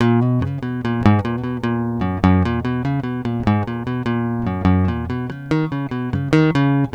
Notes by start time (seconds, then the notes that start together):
0.01 A#2
0.44 C#3
0.64 B2
0.86 A#2
1.07 G#2
1.26 A#2
1.45 B2
1.65 A#2
2.03 F#2
2.25 F#2
2.44 E2 A#2
2.66 B2
2.87 C#3
3.05 B2
3.26 A#2
3.48 G#2
3.69 A#2
3.88 B2
4.07 A#2
4.48 F#2
4.66 F#2
4.86 E2 A#2
5.11 B2
5.31 C#3
5.52 D#3
5.73 C#3
5.93 B2
6.15 C#3
6.34 D#3
6.56 C#3